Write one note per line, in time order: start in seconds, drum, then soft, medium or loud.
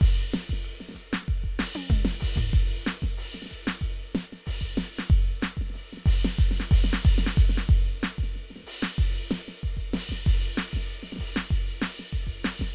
0.01 kick loud
0.01 ride loud
0.30 kick soft
0.30 hi-hat pedal medium
0.34 snare loud
0.34 ride loud
0.50 kick medium
0.50 snare soft
0.65 ride loud
0.81 snare medium
0.89 snare soft
0.92 kick soft
0.92 snare soft
0.95 snare soft
0.95 hi-hat pedal medium
0.95 ride loud
1.14 snare loud
1.23 snare soft
1.29 kick medium
1.29 ride loud
1.44 kick medium
1.44 ride medium
1.60 snare loud
1.60 hi-hat pedal medium
1.60 ride loud
1.76 high tom loud
1.90 kick loud
1.90 hi-hat pedal medium
1.90 mid tom loud
2.05 snare loud
2.20 kick medium
2.20 hi-hat pedal medium
2.20 ride loud
2.37 kick medium
2.37 floor tom loud
2.54 kick loud
2.54 hi-hat pedal soft
2.54 ride loud
2.86 snare loud
2.86 hi-hat pedal medium
3.03 kick medium
3.03 snare medium
3.18 hi-hat pedal medium
3.18 ride loud
3.35 snare medium
3.43 snare soft
3.46 snare soft
3.51 kick soft
3.51 hi-hat pedal medium
3.51 ride loud
3.68 snare loud
3.82 kick medium
3.82 ride loud
3.99 ride medium
4.14 kick soft
4.14 snare loud
4.14 hi-hat pedal medium
4.14 ride loud
4.33 snare soft
4.47 kick medium
4.47 ride loud
4.62 kick medium
4.78 snare loud
4.78 hi-hat pedal medium
4.78 ride loud
4.99 snare loud
5.08 kick loud
5.08 hi-hat pedal soft
5.08 crash loud
5.39 kick soft
5.39 snare loud
5.39 hi-hat pedal medium
5.39 ride loud
5.58 kick medium
5.58 snare soft
5.70 snare soft
5.70 hi-hat pedal medium
5.70 ride medium
5.76 snare soft
5.93 snare soft
5.98 snare soft
6.07 kick loud
6.07 hi-hat pedal medium
6.07 ride loud
6.25 snare loud
6.39 open hi-hat loud
6.39 kick loud
6.52 snare medium
6.61 snare medium
6.72 kick loud
6.72 ride loud
6.85 snare medium
6.94 snare loud
7.05 kick loud
7.05 hi-hat pedal soft
7.05 ride loud
7.19 snare loud
7.27 snare loud
7.38 open hi-hat loud
7.38 kick loud
7.50 snare medium
7.58 snare medium
7.69 kick loud
7.69 crash loud
8.03 snare loud
8.03 hi-hat pedal medium
8.03 ride medium
8.19 kick medium
8.24 snare soft
8.33 snare soft
8.33 hi-hat pedal medium
8.33 ride soft
8.51 snare soft
8.56 snare soft
8.59 snare soft
8.63 kick soft
8.63 hi-hat pedal medium
8.68 ride loud
8.83 snare loud
8.99 kick loud
8.99 ride medium
9.14 ride soft
9.30 snare loud
9.30 hi-hat pedal medium
9.30 ride loud
9.49 snare medium
9.62 kick medium
9.62 ride medium
9.78 kick medium
9.78 ride medium
9.94 snare loud
9.94 hi-hat pedal medium
9.94 ride loud
10.10 kick medium
10.10 snare medium
10.27 kick loud
10.27 ride loud
10.58 snare loud
10.58 hi-hat pedal medium
10.58 ride medium
10.74 kick medium
10.74 snare soft
10.89 hi-hat pedal medium
10.89 ride medium
11.03 snare medium
11.13 snare medium
11.17 kick medium
11.17 snare medium
11.17 hi-hat pedal medium
11.17 ride loud
11.37 snare loud
11.51 kick medium
11.51 ride medium
11.66 ride medium
11.82 snare loud
11.82 hi-hat pedal medium
11.82 ride loud
12.00 snare medium
12.13 kick medium
12.13 ride medium
12.28 kick medium
12.28 ride soft
12.43 snare loud
12.43 hi-hat pedal medium
12.43 ride loud
12.60 kick medium
12.60 snare medium